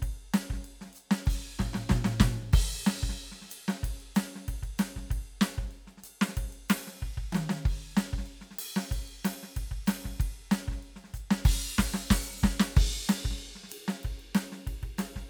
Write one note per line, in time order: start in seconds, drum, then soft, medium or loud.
0.02 kick medium
0.02 crash medium
0.34 snare loud
0.34 hi-hat pedal medium
0.34 crash medium
0.50 kick medium
0.50 snare soft
0.64 crash soft
0.81 snare soft
0.85 kick soft
0.85 snare soft
0.93 hi-hat pedal medium
0.93 crash soft
1.11 snare loud
1.26 kick medium
1.26 hi-hat pedal medium
1.26 crash medium
1.59 kick medium
1.59 snare medium
1.59 mid tom medium
1.73 snare medium
1.73 mid tom medium
1.89 kick medium
1.89 snare loud
1.89 mid tom loud
2.04 snare loud
2.04 mid tom loud
2.20 kick medium
2.20 snare loud
2.20 hi-hat pedal soft
2.20 mid tom loud
2.53 kick loud
2.53 crash loud
2.86 snare loud
2.86 hi-hat pedal medium
2.86 crash medium
3.03 kick medium
3.09 snare soft
3.32 snare soft
3.42 snare soft
3.44 snare soft
3.50 hi-hat pedal medium
3.50 crash medium
3.68 snare loud
3.83 kick medium
3.83 crash medium
4.00 crash soft
4.15 snare loud
4.15 hi-hat pedal medium
4.15 crash medium
4.36 snare soft
4.48 kick medium
4.48 crash medium
4.63 kick soft
4.63 crash soft
4.78 snare loud
4.78 hi-hat pedal medium
4.78 crash medium
4.96 kick soft
4.96 snare soft
5.11 kick medium
5.11 crash medium
5.41 snare loud
5.41 hi-hat pedal medium
5.58 kick medium
5.58 snare soft
5.71 crash soft
5.87 snare soft
5.97 snare soft
6.03 kick soft
6.03 hi-hat pedal medium
6.03 crash medium
6.21 snare loud
6.29 snare medium
6.37 kick medium
6.37 crash medium
6.53 crash soft
6.69 snare loud
6.69 hi-hat pedal medium
6.69 crash loud
6.87 snare soft
7.01 kick medium
7.01 snare soft
7.01 crash soft
7.17 kick medium
7.33 snare loud
7.33 hi-hat pedal medium
7.33 high tom loud
7.49 snare loud
7.65 kick medium
7.65 crash medium
7.97 snare loud
7.97 hi-hat pedal medium
7.97 crash soft
8.13 kick medium
8.18 snare soft
8.26 crash soft
8.41 snare soft
8.51 snare soft
8.53 snare soft
8.59 hi-hat pedal medium
8.59 crash loud
8.76 snare loud
8.91 kick medium
8.91 crash medium
9.08 crash soft
9.24 snare loud
9.24 hi-hat pedal medium
9.24 crash loud
9.43 snare soft
9.56 kick medium
9.56 crash medium
9.71 kick medium
9.71 crash soft
9.87 snare loud
9.87 hi-hat pedal medium
9.87 crash loud
10.04 kick soft
10.04 snare soft
10.20 kick medium
10.20 crash medium
10.51 snare loud
10.51 hi-hat pedal medium
10.51 crash medium
10.68 kick medium
10.68 snare soft
10.83 crash soft
10.96 snare soft
11.04 snare soft
11.08 snare soft
11.14 kick soft
11.14 hi-hat pedal medium
11.14 crash soft
11.31 snare loud
11.44 kick loud
11.44 hi-hat pedal medium
11.44 crash loud
11.78 open hi-hat loud
11.78 kick medium
11.78 snare loud
11.94 snare medium
11.94 open hi-hat medium
12.10 open hi-hat loud
12.10 kick medium
12.10 snare loud
12.43 kick medium
12.43 snare loud
12.60 snare loud
12.77 kick loud
12.77 ride loud
13.09 snare loud
13.09 hi-hat pedal medium
13.09 ride loud
13.25 kick medium
13.30 snare soft
13.39 ride soft
13.55 snare soft
13.64 snare soft
13.69 hi-hat pedal medium
13.69 ride loud
13.88 snare loud
14.03 kick medium
14.03 ride medium
14.20 ride soft
14.35 snare loud
14.35 hi-hat pedal medium
14.35 ride medium
14.52 snare soft
14.67 kick medium
14.67 ride medium
14.83 kick soft
14.83 crash soft
14.83 ride soft
14.98 snare medium
14.98 hi-hat pedal medium
14.98 ride medium
15.16 kick soft
15.16 snare soft